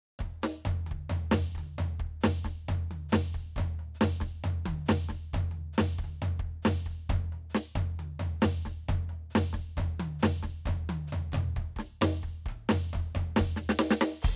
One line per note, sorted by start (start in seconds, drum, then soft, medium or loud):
0.19 kick medium
0.19 floor tom medium
0.42 snare loud
0.42 hi-hat pedal medium
0.65 kick medium
0.65 floor tom loud
0.86 high tom medium
0.91 kick medium
1.10 floor tom loud
1.15 kick soft
1.31 snare loud
1.31 floor tom loud
1.31 hi-hat pedal medium
1.55 kick soft
1.55 high tom medium
1.78 floor tom loud
1.99 kick medium
2.21 snare loud
2.21 floor tom loud
2.21 hi-hat pedal medium
2.44 kick medium
2.44 snare soft
2.68 kick medium
2.68 floor tom loud
2.91 high tom medium
3.09 snare loud
3.09 floor tom loud
3.09 hi-hat pedal medium
3.34 kick medium
3.56 kick medium
3.56 floor tom loud
3.79 floor tom soft
3.95 hi-hat pedal medium
4.01 snare loud
4.01 floor tom loud
4.20 kick medium
4.20 snare medium
4.44 floor tom loud
4.66 kick medium
4.66 high tom loud
4.86 snare loud
4.86 floor tom loud
4.86 hi-hat pedal medium
5.09 kick medium
5.09 snare soft
5.33 kick medium
5.33 floor tom loud
5.51 high tom medium
5.73 hi-hat pedal loud
5.78 snare loud
5.78 floor tom loud
5.98 kick medium
6.04 high tom medium
6.22 floor tom loud
6.39 kick medium
6.62 snare loud
6.62 floor tom loud
6.62 hi-hat pedal medium
6.86 kick soft
7.09 kick loud
7.09 floor tom loud
7.32 floor tom soft
7.50 hi-hat pedal medium
7.55 snare loud
7.75 kick medium
7.75 floor tom loud
7.99 high tom medium
8.19 floor tom loud
8.41 snare loud
8.41 floor tom loud
8.41 hi-hat pedal medium
8.65 kick medium
8.65 snare soft
8.89 kick medium
8.89 floor tom loud
9.09 floor tom soft
9.30 hi-hat pedal medium
9.35 snare loud
9.35 floor tom loud
9.53 kick medium
9.53 snare soft
9.77 kick medium
9.77 floor tom loud
10.00 high tom loud
10.19 snare loud
10.19 floor tom loud
10.19 hi-hat pedal medium
10.43 kick medium
10.43 snare soft
10.65 kick medium
10.65 floor tom loud
10.78 kick soft
10.89 high tom loud
11.07 hi-hat pedal loud
11.12 floor tom loud
11.32 kick soft
11.32 floor tom loud
11.32 mid tom loud
11.56 kick medium
11.56 floor tom medium
11.76 kick medium
11.76 snare medium
12.01 snare loud
12.01 floor tom loud
12.01 hi-hat pedal loud
12.23 kick medium
12.46 kick medium
12.46 floor tom medium
12.69 snare loud
12.69 floor tom loud
12.93 kick medium
12.93 floor tom loud
13.15 kick medium
13.15 floor tom loud
13.36 kick medium
13.36 snare loud
13.36 floor tom loud
13.36 hi-hat pedal medium
13.56 snare medium
13.69 snare loud
13.79 snare loud
13.91 snare loud
14.01 snare loud
14.22 kick loud
14.22 crash loud